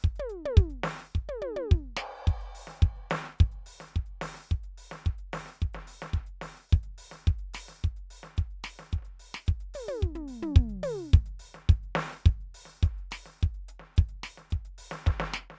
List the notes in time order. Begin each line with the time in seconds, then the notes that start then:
0.01 kick, closed hi-hat, hi-hat pedal
0.16 closed hi-hat, high tom
0.30 closed hi-hat
0.46 high tom
0.58 kick, closed hi-hat
0.70 closed hi-hat
0.84 open hi-hat, snare
1.01 snare
1.14 kick, hi-hat pedal
1.29 high tom
1.42 high tom
1.56 high tom
1.72 kick
1.97 snare, crash
2.28 kick, closed hi-hat
2.41 closed hi-hat
2.55 open hi-hat
2.68 snare
2.78 hi-hat pedal
2.82 kick, closed hi-hat
2.96 closed hi-hat
3.11 open hi-hat, snare
3.25 snare
3.36 closed hi-hat, hi-hat pedal
3.41 kick
3.52 snare, closed hi-hat
3.56 snare
3.67 open hi-hat
3.81 snare
3.90 hi-hat pedal
3.95 kick, closed hi-hat
4.06 closed hi-hat
4.22 open hi-hat, snare
4.35 snare
4.48 kick, closed hi-hat, hi-hat pedal
4.64 closed hi-hat
4.78 open hi-hat
4.92 snare
5.02 closed hi-hat, hi-hat pedal
5.07 kick
5.19 closed hi-hat
5.33 open hi-hat, snare
5.39 kick
5.47 snare
5.57 hi-hat pedal
5.61 kick, closed hi-hat
5.74 snare, closed hi-hat
5.88 open hi-hat
6.03 snare
6.08 hi-hat pedal
6.14 kick, closed hi-hat
6.27 closed hi-hat
6.42 snare, open hi-hat
6.70 kick, hi-hat pedal, open hi-hat
6.84 closed hi-hat
6.98 open hi-hat
7.12 snare
7.23 closed hi-hat, hi-hat pedal
7.28 kick
7.39 closed hi-hat
7.54 open hi-hat, snare
7.69 snare
7.81 kick, closed hi-hat, hi-hat pedal
7.97 closed hi-hat
8.11 open hi-hat
8.24 snare
8.34 closed hi-hat, hi-hat pedal
8.39 kick
8.51 closed hi-hat
8.64 open hi-hat, snare
8.80 snare
8.89 closed hi-hat, hi-hat pedal
8.93 kick
8.99 snare
9.03 snare, closed hi-hat
9.20 open hi-hat
9.35 snare
9.45 kick, closed hi-hat, hi-hat pedal
9.61 closed hi-hat
9.75 open hi-hat, high tom
9.89 high tom
9.99 kick, closed hi-hat, hi-hat pedal
10.15 closed hi-hat, floor tom
10.28 kick, open hi-hat
10.42 floor tom
10.54 kick, closed hi-hat, hi-hat pedal
10.70 closed hi-hat
10.83 open hi-hat, high tom
11.11 kick, closed hi-hat, hi-hat pedal
11.26 closed hi-hat
11.40 open hi-hat
11.55 snare
11.66 hi-hat pedal
11.70 kick, closed hi-hat
11.84 closed hi-hat
11.96 open hi-hat, snare
12.11 snare
12.13 snare
12.23 kick, closed hi-hat, hi-hat pedal
12.41 closed hi-hat
12.55 open hi-hat
12.66 snare
12.80 kick, snare, hi-hat pedal
12.85 closed hi-hat
12.99 closed hi-hat
13.11 open hi-hat, snare
13.26 snare
13.39 closed hi-hat, hi-hat pedal
13.43 kick
13.55 closed hi-hat
13.69 open hi-hat
13.80 snare
13.93 hi-hat pedal
13.97 kick, closed hi-hat
14.09 closed hi-hat
14.24 open hi-hat, snare
14.38 snare
14.47 snare, closed hi-hat, hi-hat pedal
14.53 kick
14.66 closed hi-hat
14.78 open hi-hat, kick
14.92 snare
15.04 kick, snare, hi-hat pedal
15.20 snare
15.33 kick, snare
15.51 snare